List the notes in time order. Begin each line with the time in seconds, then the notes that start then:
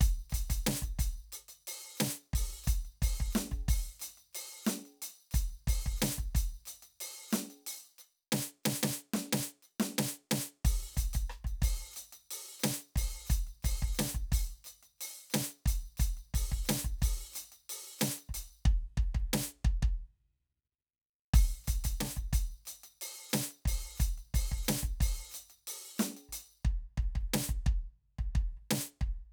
0.01 kick, percussion
0.30 kick, hi-hat pedal
0.34 closed hi-hat
0.50 closed hi-hat, kick
0.67 snare
0.82 kick, closed hi-hat
0.99 kick, percussion
1.32 hi-hat pedal, percussion
1.49 closed hi-hat
1.68 percussion
1.98 closed hi-hat, snare, hi-hat pedal
2.17 closed hi-hat
2.34 kick, percussion
2.64 closed hi-hat, kick, hi-hat pedal
2.85 closed hi-hat
3.02 kick, percussion
3.20 kick
3.33 closed hi-hat, snare, hi-hat pedal
3.51 kick, closed hi-hat
3.69 kick, percussion
4.00 closed hi-hat, hi-hat pedal
4.18 closed hi-hat
4.33 hi-hat pedal, percussion
4.65 closed hi-hat, snare, hi-hat pedal
4.86 closed hi-hat
5.02 percussion
5.31 closed hi-hat, kick, hi-hat pedal
5.50 closed hi-hat
5.68 kick, percussion
5.86 kick, percussion
5.98 snare, hi-hat pedal
6.03 closed hi-hat
6.18 kick, closed hi-hat
6.35 kick, percussion
6.66 closed hi-hat, hi-hat pedal
6.83 closed hi-hat
7.01 percussion
7.31 closed hi-hat, snare, hi-hat pedal
7.50 closed hi-hat
7.67 percussion
7.99 hi-hat pedal
8.32 snare
8.64 snare, hi-hat pedal
8.83 snare
9.14 snare
9.33 snare
9.63 hi-hat pedal
9.80 snare
9.98 snare
10.31 snare
10.65 kick, percussion
10.93 kick, hi-hat pedal
10.98 closed hi-hat
11.13 closed hi-hat, kick
11.30 cross-stick
11.45 kick, closed hi-hat
11.62 kick, percussion
11.94 closed hi-hat, hi-hat pedal
12.13 closed hi-hat
12.31 percussion
12.60 hi-hat pedal
12.64 closed hi-hat, snare
12.81 closed hi-hat
12.96 kick, percussion
13.27 closed hi-hat, kick, hi-hat pedal
13.47 closed hi-hat
13.63 kick, hi-hat pedal, percussion
13.82 kick
13.95 hi-hat pedal
13.99 closed hi-hat, snare
14.15 kick, closed hi-hat
14.32 kick, percussion
14.65 closed hi-hat, hi-hat pedal
14.83 closed hi-hat
14.99 hi-hat pedal, percussion
15.30 snare, hi-hat pedal
15.34 closed hi-hat
15.51 closed hi-hat
15.66 kick, percussion
15.98 closed hi-hat, kick, hi-hat pedal
16.17 closed hi-hat
16.34 kick, percussion
16.52 kick
16.66 snare, hi-hat pedal
16.70 closed hi-hat
16.85 kick, closed hi-hat
16.99 kick, hi-hat pedal
17.03 percussion
17.34 closed hi-hat, hi-hat pedal
17.52 closed hi-hat
17.70 percussion
17.99 closed hi-hat, snare, hi-hat pedal
18.18 closed hi-hat
18.29 kick
18.34 percussion
18.66 kick
18.70 ride
18.98 kick
19.02 crash, ride
19.15 kick
19.19 crash, ride
19.33 snare
19.65 kick
19.83 kick
19.88 ride
21.34 kick, percussion
21.64 closed hi-hat, kick, hi-hat pedal
21.84 closed hi-hat, kick
22.01 snare
22.17 kick, closed hi-hat
22.33 kick, percussion
22.66 closed hi-hat, hi-hat pedal
22.84 closed hi-hat
23.02 percussion
23.31 closed hi-hat, snare, hi-hat pedal
23.51 closed hi-hat
23.66 kick, percussion
23.98 closed hi-hat, kick, hi-hat pedal
24.18 closed hi-hat
24.34 kick, percussion
24.52 kick
24.65 snare, hi-hat pedal
24.69 closed hi-hat
24.83 kick, closed hi-hat
25.01 kick, percussion
25.32 closed hi-hat, hi-hat pedal
25.50 closed hi-hat
25.68 percussion
25.99 closed hi-hat, snare, hi-hat pedal
26.17 closed hi-hat
26.29 closed hi-hat, kick
26.65 kick
26.98 kick
27.03 crash
27.16 kick
27.20 snare, crash, ride
27.34 snare
27.49 kick
27.67 kick
28.19 kick
28.35 kick
28.41 crash
28.57 kick
28.71 snare
29.01 kick, snare